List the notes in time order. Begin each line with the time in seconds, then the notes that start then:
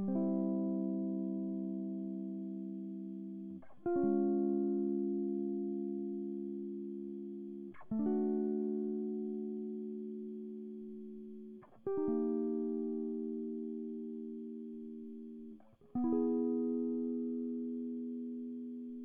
0.00 G3
0.08 C4
0.16 E4
3.86 F4
3.96 C#4
4.04 G#3
7.92 A3
7.99 D4
8.06 F#4
11.35 F#4
11.87 G4
11.98 D#4
12.08 A#3
15.96 B3
16.04 E4
16.13 G#4